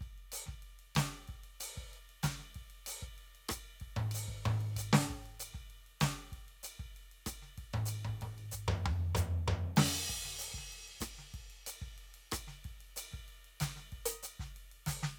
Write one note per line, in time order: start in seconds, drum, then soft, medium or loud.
0.01 kick medium
0.01 ride bell soft
0.18 ride soft
0.32 hi-hat pedal loud
0.32 ride bell medium
0.46 kick soft
0.46 snare soft
0.62 ride soft
0.79 ride soft
0.95 kick soft
0.95 snare medium
0.95 hi-hat pedal medium
0.95 ride bell medium
1.12 snare soft
1.28 kick soft
1.28 ride soft
1.44 ride soft
1.60 hi-hat pedal medium
1.60 ride bell medium
1.76 kick soft
1.76 snare soft
1.94 ride soft
2.09 ride soft
2.23 kick soft
2.23 snare medium
2.23 hi-hat pedal medium
2.23 ride bell medium
2.39 snare soft
2.55 kick soft
2.55 ride soft
2.70 ride soft
2.87 hi-hat pedal medium
2.87 ride bell medium
3.01 kick soft
3.01 snare soft
3.18 ride soft
3.35 ride soft
3.49 kick soft
3.49 cross-stick medium
3.49 hi-hat pedal medium
3.49 ride bell medium
3.80 kick soft
3.80 ride soft
3.97 high tom loud
3.97 ride soft
4.11 hi-hat pedal medium
4.11 ride bell medium
4.28 kick soft
4.46 high tom loud
4.46 ride soft
4.61 ride soft
4.76 kick soft
4.76 hi-hat pedal medium
4.76 ride bell medium
4.93 snare loud
5.10 kick medium
5.26 ride soft
5.40 hi-hat pedal medium
5.40 ride bell medium
5.54 kick soft
5.54 snare soft
5.70 ride soft
5.87 ride soft
6.01 kick soft
6.01 snare medium
6.01 hi-hat pedal medium
6.01 ride bell medium
6.19 snare soft
6.32 kick soft
6.32 ride soft
6.36 snare soft
6.48 ride soft
6.63 hi-hat pedal medium
6.63 ride bell medium
6.79 kick soft
6.79 snare soft
6.97 ride soft
7.12 ride soft
7.26 kick soft
7.26 cross-stick medium
7.26 hi-hat pedal medium
7.26 ride bell medium
7.42 snare soft
7.58 kick soft
7.58 ride soft
7.74 high tom loud
7.74 ride soft
7.86 hi-hat pedal medium
7.86 ride bell medium
8.05 kick soft
8.05 high tom medium
8.21 high tom medium
8.21 ride soft
8.38 ride bell soft
8.52 kick soft
8.52 hi-hat pedal medium
8.52 ride soft
8.68 mid tom loud
8.86 mid tom loud
9.15 hi-hat pedal medium
9.15 mid tom loud
9.48 mid tom loud
9.77 snare loud
9.77 crash loud
10.10 kick soft
10.10 ride medium
10.25 snare soft
10.39 hi-hat pedal medium
10.39 ride medium
10.54 kick soft
10.54 snare soft
10.72 ride soft
10.88 ride soft
11.01 kick soft
11.01 cross-stick medium
11.01 hi-hat pedal medium
11.01 ride bell medium
11.18 snare soft
11.34 kick soft
11.34 ride soft
11.50 ride soft
11.67 hi-hat pedal loud
11.67 ride bell medium
11.82 kick medium
11.82 snare soft
11.98 ride soft
12.14 ride soft
12.32 kick soft
12.32 cross-stick medium
12.32 hi-hat pedal medium
12.32 ride bell medium
12.48 snare soft
12.65 kick soft
12.65 ride soft
12.81 ride soft
12.96 hi-hat pedal loud
12.96 ride bell medium
13.11 kick soft
13.11 snare soft
13.28 ride soft
13.45 ride soft
13.60 kick soft
13.60 snare medium
13.60 hi-hat pedal medium
13.60 ride bell medium
13.76 snare soft
13.92 kick soft
13.92 ride soft
14.06 closed hi-hat loud
14.06 ride soft
14.23 hi-hat pedal medium
14.23 ride bell medium
14.40 kick medium
14.40 snare soft
14.56 ride soft
14.72 ride soft
14.87 kick soft
14.87 snare medium
14.87 hi-hat pedal medium
14.87 ride medium
15.03 snare medium